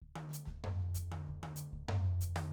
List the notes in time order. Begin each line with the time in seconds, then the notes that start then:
0.02 kick
0.16 high tom
0.29 snare, hi-hat pedal
0.45 kick, snare
0.64 floor tom
0.78 snare
0.94 kick, snare, hi-hat pedal
1.12 high tom
1.25 kick, snare
1.43 high tom
1.56 snare, hi-hat pedal
1.72 kick, snare
1.88 floor tom
2.04 snare
2.19 kick, snare, hi-hat pedal
2.36 cross-stick, high tom